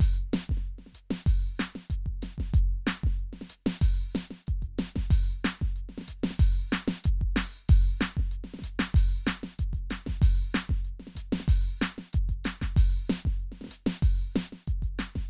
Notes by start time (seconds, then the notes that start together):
0.01 open hi-hat, kick
0.33 closed hi-hat, snare, hi-hat pedal
0.50 kick, snare
0.58 snare
0.64 closed hi-hat
0.79 snare
0.87 snare
0.93 closed hi-hat, kick
1.11 snare
1.27 open hi-hat, kick
1.43 open hi-hat
1.59 closed hi-hat, snare, hi-hat pedal
1.76 snare
1.91 closed hi-hat, kick
2.07 kick, closed hi-hat
2.23 closed hi-hat, snare
2.39 kick, snare
2.55 open hi-hat, kick
2.87 open hi-hat, snare, hi-hat pedal
3.04 kick, snare
3.19 closed hi-hat
3.34 snare
3.42 snare
3.49 closed hi-hat, kick
3.67 snare
3.82 open hi-hat, kick
4.15 closed hi-hat, snare, hi-hat pedal
4.31 snare
4.48 closed hi-hat, kick
4.63 kick, closed hi-hat
4.79 closed hi-hat, snare
4.96 kick, snare
5.11 open hi-hat, kick
5.44 closed hi-hat, snare, hi-hat pedal
5.62 kick, snare
5.76 closed hi-hat
5.90 snare
5.98 snare
6.02 snare
6.09 closed hi-hat, kick
6.24 snare
6.31 snare
6.40 open hi-hat, kick
6.72 closed hi-hat, snare, hi-hat pedal
6.88 snare
7.05 closed hi-hat, kick
7.22 kick
7.37 open hi-hat, kick, snare
7.70 open hi-hat, kick
8.01 snare, hi-hat pedal
8.18 kick, snare
8.32 closed hi-hat
8.45 snare
8.54 snare
8.60 kick, snare
8.64 closed hi-hat
8.80 snare
8.95 open hi-hat, kick
9.27 closed hi-hat, kick, snare, hi-hat pedal
9.44 snare
9.60 closed hi-hat, kick
9.74 kick, closed hi-hat
9.91 closed hi-hat, snare
10.07 kick, snare
10.22 open hi-hat, kick
10.53 open hi-hat, kick, snare, hi-hat pedal
10.70 kick, snare
10.84 closed hi-hat, hi-hat pedal
10.93 kick
11.00 snare
11.08 snare
11.16 closed hi-hat, kick, snare
11.33 snare
11.41 snare
11.49 open hi-hat, kick
11.66 open hi-hat
11.82 closed hi-hat, snare, hi-hat pedal
11.99 snare
12.14 closed hi-hat, kick
12.30 kick, closed hi-hat
12.45 closed hi-hat, snare
12.62 kick, snare
12.77 open hi-hat, kick
13.10 open hi-hat, snare, hi-hat pedal
13.26 kick, snare
13.40 closed hi-hat
13.53 snare
13.62 snare
13.65 snare
13.67 kick, snare
13.70 closed hi-hat, snare
13.87 snare
14.03 open hi-hat, kick
14.20 open hi-hat
14.35 closed hi-hat, snare, hi-hat pedal
14.53 snare
14.68 closed hi-hat, kick
14.83 kick, closed hi-hat
15.00 closed hi-hat, snare
15.16 kick, snare